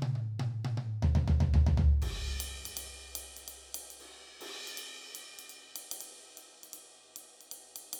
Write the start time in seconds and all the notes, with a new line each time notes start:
0.02 mid tom
0.15 mid tom
0.40 mid tom
0.65 mid tom
0.77 mid tom
1.02 floor tom
1.15 floor tom
1.28 floor tom
1.40 floor tom
1.54 floor tom
1.67 floor tom
1.77 floor tom
2.02 kick, ride
2.40 ride
2.65 ride
2.77 ride
3.15 ride
3.37 ride
3.48 ride
3.74 ride
3.90 ride
4.00 ride
4.41 ride
4.67 ride
5.15 ride
5.39 ride
5.49 ride bell
5.76 ride
5.91 ride
6.01 ride
6.37 ride
6.63 ride
6.73 ride
7.16 ride
7.41 ride
7.51 ride
7.76 ride
7.93 ride